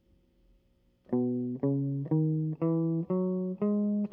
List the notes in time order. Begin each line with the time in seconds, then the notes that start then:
1.14 B2
1.64 C#3
2.12 D#3
2.62 E3
3.11 F#3
3.62 G#3